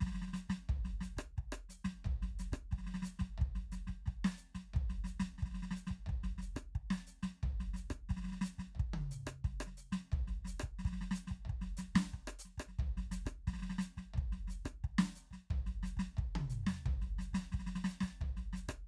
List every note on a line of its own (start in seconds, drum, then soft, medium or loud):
0.01 kick soft
0.01 snare soft
0.07 snare soft
0.12 snare soft
0.15 snare soft
0.28 snare soft
0.34 snare medium
0.34 hi-hat pedal soft
0.50 kick soft
0.50 snare medium
0.69 kick soft
0.69 floor tom medium
0.85 snare soft
1.01 snare soft
1.01 hi-hat pedal soft
1.17 kick soft
1.17 cross-stick medium
1.37 kick soft
1.37 snare soft
1.53 cross-stick medium
1.70 snare soft
1.70 hi-hat pedal medium
1.85 kick soft
1.85 snare medium
1.94 snare soft
2.05 kick soft
2.05 floor tom medium
2.23 snare soft
2.39 snare soft
2.39 hi-hat pedal medium
2.53 kick soft
2.53 cross-stick medium
2.72 kick soft
2.72 snare soft
2.79 snare soft
2.84 snare soft
2.87 snare soft
2.95 snare soft
3.03 snare soft
3.03 hi-hat pedal medium
3.20 kick soft
3.20 snare soft
3.38 kick soft
3.38 floor tom medium
3.56 snare soft
3.72 snare soft
3.72 hi-hat pedal soft
3.87 kick soft
3.87 snare soft
4.06 kick soft
4.06 snare soft
4.25 snare medium
4.38 snare soft
4.38 hi-hat pedal soft
4.55 kick soft
4.55 snare soft
4.74 kick soft
4.74 floor tom medium
4.90 snare soft
5.04 snare soft
5.04 hi-hat pedal soft
5.20 kick soft
5.20 snare medium
5.39 snare soft
5.43 kick soft
5.43 snare soft
5.51 snare soft
5.55 snare soft
5.63 snare soft
5.71 snare medium
5.77 hi-hat pedal soft
5.87 kick soft
5.87 snare soft
6.07 kick soft
6.07 floor tom medium
6.24 snare soft
6.38 snare soft
6.38 hi-hat pedal soft
6.56 kick soft
6.56 cross-stick medium
6.76 kick soft
6.76 snare soft
6.91 snare medium
7.07 snare soft
7.07 hi-hat pedal soft
7.23 kick soft
7.23 snare medium
7.43 kick soft
7.43 floor tom medium
7.61 snare soft
7.74 snare soft
7.74 hi-hat pedal soft
7.91 kick soft
7.91 cross-stick medium
8.10 kick soft
8.10 snare soft
8.17 snare soft
8.22 snare soft
8.24 snare soft
8.28 snare soft
8.42 snare medium
8.42 hi-hat pedal medium
8.59 kick soft
8.59 snare soft
8.76 floor tom medium
8.80 kick soft
8.94 high tom loud
9.12 hi-hat pedal medium
9.27 kick soft
9.27 cross-stick medium
9.45 kick soft
9.45 snare soft
9.61 cross-stick medium
9.67 snare soft
9.78 snare soft
9.78 hi-hat pedal medium
9.92 kick soft
9.92 snare medium
10.12 kick soft
10.12 floor tom medium
10.28 snare soft
10.45 snare soft
10.45 hi-hat pedal medium
10.60 kick soft
10.60 cross-stick medium
10.79 snare soft
10.85 kick soft
10.85 snare soft
10.92 snare soft
11.02 snare soft
11.12 snare medium
11.12 hi-hat pedal medium
11.28 kick soft
11.28 snare soft
11.46 floor tom medium
11.50 kick soft
11.62 snare soft
11.78 snare soft
11.78 hi-hat pedal medium
11.95 kick soft
11.95 snare medium
12.14 kick soft
12.14 snare soft
12.28 cross-stick medium
12.39 hi-hat pedal medium
12.45 snare soft
12.58 kick soft
12.58 cross-stick medium
12.69 snare soft
12.79 kick soft
12.79 floor tom medium
12.98 snare soft
13.12 snare soft
13.12 hi-hat pedal medium
13.26 kick soft
13.26 cross-stick medium
13.48 kick soft
13.48 snare soft
13.54 snare soft
13.59 snare soft
13.63 snare soft
13.70 snare soft
13.79 snare medium
13.79 hi-hat pedal medium
13.98 kick soft
13.98 snare soft
14.14 kick soft
14.14 floor tom medium
14.33 snare soft
14.48 snare soft
14.48 hi-hat pedal soft
14.65 kick soft
14.65 cross-stick medium
14.84 kick soft
14.84 snare soft
14.99 snare medium
15.16 snare soft
15.16 hi-hat pedal soft
15.31 kick soft
15.31 snare soft
15.51 kick soft
15.51 floor tom medium
15.67 snare soft
15.83 snare soft
15.83 hi-hat pedal soft
15.97 kick soft
15.97 snare medium
16.17 kick soft
16.17 floor tom medium
16.36 high tom loud
16.50 snare soft
16.50 hi-hat pedal soft
16.64 kick soft
16.64 snare medium
16.86 kick soft
16.86 floor tom loud
17.02 snare soft
17.19 snare soft
17.19 hi-hat pedal soft
17.34 kick soft
17.34 snare medium
17.52 kick soft
17.52 snare soft
17.60 snare soft
17.67 snare soft
17.76 snare medium
17.85 snare medium
17.89 hi-hat pedal soft
18.01 kick soft
18.01 snare medium
18.21 kick soft
18.21 floor tom medium
18.37 snare soft
18.53 snare soft
18.53 hi-hat pedal soft
18.69 kick soft
18.69 cross-stick medium